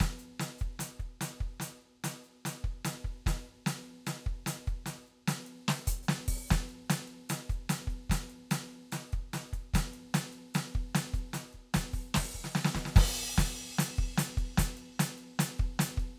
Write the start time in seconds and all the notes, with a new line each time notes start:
0.01 closed hi-hat, kick, snare
0.19 closed hi-hat
0.40 closed hi-hat, snare
0.58 closed hi-hat, kick
0.79 closed hi-hat, snare
0.99 kick, closed hi-hat
1.21 closed hi-hat, snare
1.40 kick, closed hi-hat
1.60 closed hi-hat, snare
1.81 closed hi-hat
2.04 closed hi-hat, snare
2.23 closed hi-hat
2.45 closed hi-hat, snare
2.64 kick, closed hi-hat
2.85 closed hi-hat, snare
3.04 kick
3.26 closed hi-hat, kick, snare
3.45 closed hi-hat
3.66 closed hi-hat, snare
3.85 closed hi-hat
4.07 closed hi-hat, snare
4.26 kick, closed hi-hat
4.46 closed hi-hat, snare
4.66 closed hi-hat, kick
4.86 closed hi-hat, snare
5.06 closed hi-hat
5.28 closed hi-hat, snare
5.46 closed hi-hat
5.68 snare
5.87 closed hi-hat, kick
6.03 hi-hat pedal
6.08 snare
6.28 kick, open hi-hat
6.48 closed hi-hat, kick, snare, hi-hat pedal
6.69 closed hi-hat
6.90 closed hi-hat, snare
7.07 closed hi-hat
7.29 closed hi-hat, snare
7.49 closed hi-hat, kick
7.69 closed hi-hat, snare
7.87 kick, closed hi-hat
8.10 closed hi-hat, kick, snare
8.30 closed hi-hat
8.51 closed hi-hat, snare
8.71 closed hi-hat
8.92 closed hi-hat, snare
9.12 kick, closed hi-hat
9.33 closed hi-hat, snare
9.53 kick, closed hi-hat
9.74 closed hi-hat, kick, snare
9.93 closed hi-hat
10.14 closed hi-hat, snare
10.33 closed hi-hat
10.54 closed hi-hat, snare
10.74 kick, closed hi-hat
10.95 closed hi-hat, snare
11.14 closed hi-hat, kick
11.33 closed hi-hat, snare
11.53 kick, closed hi-hat
11.74 open hi-hat, kick, snare
11.93 open hi-hat, kick
12.14 open hi-hat, kick, snare
12.34 open hi-hat, kick
12.44 snare
12.55 snare
12.65 snare
12.73 kick, hi-hat pedal
12.85 snare
12.95 kick, snare, hi-hat pedal, crash
13.15 closed hi-hat
13.36 closed hi-hat, kick, snare, hi-hat pedal
13.58 closed hi-hat
13.75 closed hi-hat, snare, hi-hat pedal
13.98 kick, closed hi-hat
14.18 closed hi-hat, snare
14.37 kick, closed hi-hat
14.57 closed hi-hat, kick, snare
14.77 closed hi-hat
14.99 closed hi-hat, snare
15.18 closed hi-hat
15.39 closed hi-hat, snare
15.59 kick, closed hi-hat
15.79 closed hi-hat, snare
15.97 kick, closed hi-hat